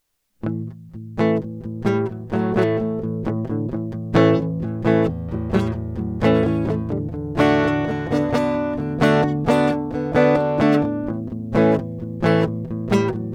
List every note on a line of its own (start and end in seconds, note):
0.45 0.68 A2
0.45 0.73 E3
0.59 0.75 A3
0.69 0.81 A2
0.95 1.18 A2
1.19 1.42 A2
1.19 1.45 E3
1.19 1.47 A3
1.44 1.62 A2
1.66 1.82 A2
1.84 2.07 A2
1.84 2.07 G3
1.89 2.11 A3
2.07 2.28 A2
2.07 2.32 F#3
2.31 2.54 A2
2.31 2.56 F#3
2.31 2.55 A3
2.54 2.79 A2
2.59 2.79 E3
2.59 2.76 A3
2.76 2.98 A2
2.76 2.99 E3
2.76 2.95 A3
2.96 3.28 A3
3.00 3.25 A2
3.06 3.26 E3
3.27 3.45 A2
3.27 3.37 E3
3.27 3.46 A3
3.46 3.69 A2
3.53 3.70 D3
3.70 4.38 A2
3.76 3.93 E3
3.93 4.14 E3
4.16 4.41 E3
4.16 4.40 A3
4.16 4.88 C#4
4.42 4.64 E3
4.64 4.87 E3
4.87 5.17 E3
4.87 5.13 A3
4.87 5.25 C#4
5.33 5.53 A3
5.56 5.69 G3
5.56 5.77 A3
5.69 5.81 G3
5.98 6.22 F#3
6.23 6.44 E3
6.23 6.48 A3
6.27 6.67 C#4
6.45 6.66 A2
6.45 6.66 E3
6.45 6.70 A3
6.67 7.13 A2
6.67 6.83 E3
6.67 6.90 C#4
6.72 6.86 A3
6.91 7.10 D3
6.91 7.05 G3
7.10 7.37 D3
7.37 7.65 D3
7.37 7.63 A3
7.42 8.37 F#4
7.64 7.86 D3
7.64 7.76 A3
7.86 8.08 D3
7.91 8.04 A3
7.91 8.11 D4
8.08 8.30 D3
8.13 8.36 B3
8.13 8.36 D4
8.35 8.57 D3
8.35 8.79 B3
8.35 8.81 D4
8.35 9.03 F#4
8.79 9.02 D3
8.79 9.01 A3
8.79 8.98 D4
9.02 9.24 D3
9.02 9.26 A3
9.02 9.28 D4
9.02 9.37 F#4
9.24 9.46 D3
9.46 9.71 D3
9.46 9.77 B3
9.51 9.97 D4
9.51 9.86 F#4
9.72 9.91 D3
9.92 10.16 D3
9.97 10.15 B3
9.97 10.11 D4
10.16 10.36 D3
10.16 10.37 B3
10.16 10.62 D4
10.16 10.58 F#4
10.36 10.60 D3
10.36 10.43 B3
10.59 10.85 D3
10.59 10.75 A3
10.59 11.14 D4
10.59 10.83 F#4
10.75 10.87 G#3
10.84 11.05 A2
11.09 11.26 A2
11.09 11.26 E3
11.29 11.54 A2
11.29 11.41 E3
11.54 11.78 A2
11.54 11.82 E3
11.58 11.84 A3
11.58 11.92 C#4
11.80 11.99 A2
12.01 12.21 A2
12.22 12.46 A2
12.22 12.50 E3
12.27 12.50 A3
12.27 12.50 C#4
12.46 12.66 A2
12.66 12.89 A2
12.89 13.11 A2
12.94 13.09 G3
12.94 13.13 A3
13.10 13.34 A2
13.10 13.34 F#3